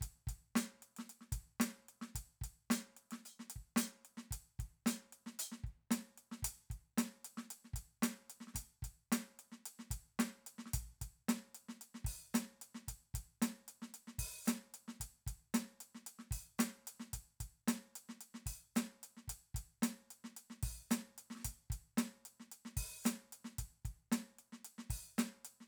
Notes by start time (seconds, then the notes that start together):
0.01 kick, closed hi-hat
0.27 kick, closed hi-hat
0.56 closed hi-hat, snare
0.82 closed hi-hat
0.97 snare, closed hi-hat
1.09 closed hi-hat
1.21 snare
1.32 kick, closed hi-hat
1.60 snare, closed hi-hat
1.89 closed hi-hat
2.01 snare
2.15 kick, closed hi-hat
2.41 kick, closed hi-hat
2.70 closed hi-hat, snare
2.97 closed hi-hat
3.11 snare, closed hi-hat
3.25 closed hi-hat
3.40 snare
3.50 closed hi-hat
3.56 kick
3.76 closed hi-hat, snare
4.05 closed hi-hat
4.17 snare
4.31 kick, closed hi-hat
4.59 kick, closed hi-hat
4.86 closed hi-hat, snare
5.13 closed hi-hat
5.26 snare
5.39 closed hi-hat
5.52 snare
5.64 kick, closed hi-hat
5.91 snare, closed hi-hat
6.18 closed hi-hat
6.32 snare
6.43 kick, closed hi-hat
6.70 kick, closed hi-hat
6.98 snare, closed hi-hat
7.25 closed hi-hat
7.37 snare
7.50 closed hi-hat
7.65 snare
7.74 kick, closed hi-hat
8.02 snare, closed hi-hat
8.30 closed hi-hat
8.41 snare
8.47 snare
8.54 kick, snare, closed hi-hat
8.82 kick, closed hi-hat
9.12 snare, closed hi-hat
9.39 closed hi-hat
9.52 snare
9.66 closed hi-hat
9.79 snare
9.91 kick, closed hi-hat
10.19 snare, closed hi-hat
10.46 closed hi-hat
10.58 snare
10.66 snare
10.74 kick, closed hi-hat
11.01 kick, closed hi-hat
11.29 snare, closed hi-hat
11.55 closed hi-hat
11.69 snare
11.81 closed hi-hat
11.94 snare
12.05 kick, open hi-hat
12.34 snare, closed hi-hat, hi-hat pedal
12.61 closed hi-hat
12.75 snare
12.88 kick, closed hi-hat
13.14 kick, closed hi-hat
13.42 snare, closed hi-hat
13.68 closed hi-hat
13.82 snare
13.94 closed hi-hat
14.07 snare
14.19 kick, open hi-hat
14.45 snare, closed hi-hat, hi-hat pedal
14.74 closed hi-hat
14.88 snare
15.00 kick, closed hi-hat
15.27 kick, closed hi-hat
15.54 snare, closed hi-hat
15.80 closed hi-hat
15.95 snare
16.06 closed hi-hat
16.19 snare
16.31 kick, open hi-hat
16.59 snare, closed hi-hat, hi-hat pedal
16.87 closed hi-hat
17.00 snare
17.13 kick, closed hi-hat
17.40 kick, closed hi-hat
17.68 snare, closed hi-hat
17.96 closed hi-hat
18.09 snare
18.21 closed hi-hat
18.34 snare
18.46 kick, open hi-hat
18.76 snare, closed hi-hat, hi-hat pedal
19.03 closed hi-hat
19.17 snare
19.28 kick, closed hi-hat
19.54 kick, closed hi-hat
19.82 snare, closed hi-hat
20.11 closed hi-hat
20.24 snare
20.37 closed hi-hat
20.50 snare
20.63 kick, open hi-hat
20.91 snare, closed hi-hat, hi-hat pedal
21.18 closed hi-hat
21.30 snare
21.35 snare
21.39 snare
21.45 kick, closed hi-hat
21.70 kick, closed hi-hat
21.97 snare, closed hi-hat
22.25 closed hi-hat
22.40 snare
22.52 closed hi-hat
22.65 snare
22.77 kick, open hi-hat
23.04 snare, closed hi-hat, hi-hat pedal
23.32 closed hi-hat
23.45 snare
23.58 kick, closed hi-hat
23.85 kick, closed hi-hat
24.12 snare, closed hi-hat
24.39 closed hi-hat
24.52 snare
24.65 closed hi-hat
24.78 snare
24.90 kick, open hi-hat
25.18 snare, closed hi-hat, hi-hat pedal
25.45 closed hi-hat
25.60 snare